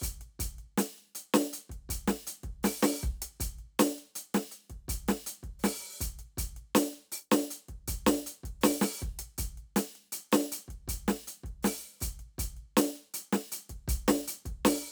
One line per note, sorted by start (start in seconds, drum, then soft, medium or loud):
0.01 closed hi-hat loud
0.01 kick medium
0.01 hi-hat pedal medium
0.21 closed hi-hat soft
0.39 closed hi-hat loud
0.39 kick medium
0.58 closed hi-hat soft
0.78 closed hi-hat loud
0.78 snare loud
0.98 closed hi-hat soft
1.15 closed hi-hat loud
1.34 snare loud
1.34 closed hi-hat medium
1.53 closed hi-hat loud
1.69 kick soft
1.69 closed hi-hat soft
1.89 closed hi-hat loud
1.89 kick medium
2.08 snare loud
2.08 closed hi-hat medium
2.27 closed hi-hat loud
2.43 kick medium
2.43 closed hi-hat soft
2.63 open hi-hat loud
2.63 snare loud
2.63 hi-hat pedal medium
2.83 open hi-hat loud
2.83 snare loud
3.02 kick medium
3.02 hi-hat pedal medium
3.22 closed hi-hat loud
3.40 closed hi-hat loud
3.40 kick medium
3.58 closed hi-hat soft
3.79 closed hi-hat loud
3.79 snare loud
3.98 closed hi-hat soft
4.14 closed hi-hat loud
4.14 hi-hat pedal soft
4.34 snare loud
4.34 closed hi-hat medium
4.51 closed hi-hat medium
4.70 kick soft
4.70 closed hi-hat soft
4.88 closed hi-hat loud
4.88 kick medium
5.08 snare loud
5.08 closed hi-hat medium
5.26 closed hi-hat loud
5.43 kick medium
5.43 closed hi-hat soft
5.59 hi-hat pedal soft
5.64 open hi-hat loud
5.64 snare loud
6.00 closed hi-hat loud
6.00 kick medium
6.00 hi-hat pedal medium
6.19 closed hi-hat medium
6.37 closed hi-hat loud
6.37 kick medium
6.56 closed hi-hat soft
6.75 closed hi-hat loud
6.75 snare loud
6.93 closed hi-hat soft
7.11 open hi-hat loud
7.11 hi-hat pedal soft
7.31 snare loud
7.31 closed hi-hat medium
7.50 closed hi-hat loud
7.68 kick soft
7.68 closed hi-hat soft
7.88 closed hi-hat loud
7.88 kick medium
8.06 snare loud
8.26 closed hi-hat loud
8.43 kick medium
8.43 closed hi-hat medium
8.61 open hi-hat loud
8.61 snare loud
8.61 hi-hat pedal medium
8.81 open hi-hat loud
8.81 snare loud
9.00 kick medium
9.00 hi-hat pedal medium
9.19 closed hi-hat loud
9.38 closed hi-hat loud
9.38 kick medium
9.57 closed hi-hat soft
9.76 closed hi-hat loud
9.76 snare loud
9.95 closed hi-hat soft
10.12 closed hi-hat loud
10.32 snare loud
10.32 closed hi-hat medium
10.52 closed hi-hat loud
10.68 kick soft
10.68 closed hi-hat soft
10.88 closed hi-hat loud
10.88 kick medium
11.08 snare loud
11.08 closed hi-hat soft
11.27 closed hi-hat medium
11.43 kick medium
11.43 closed hi-hat soft
11.62 open hi-hat loud
11.62 snare loud
11.62 hi-hat pedal medium
12.00 closed hi-hat loud
12.00 kick medium
12.00 hi-hat pedal medium
12.19 closed hi-hat soft
12.38 closed hi-hat loud
12.38 kick medium
12.57 closed hi-hat soft
12.77 closed hi-hat loud
12.77 snare loud
12.95 closed hi-hat soft
13.14 closed hi-hat loud
13.33 snare loud
13.33 closed hi-hat medium
13.52 closed hi-hat loud
13.69 kick soft
13.69 closed hi-hat medium
13.88 open hi-hat loud
13.88 kick medium
14.08 snare loud
14.23 hi-hat pedal soft
14.28 closed hi-hat loud
14.45 kick medium
14.45 closed hi-hat medium
14.65 open hi-hat loud
14.65 snare loud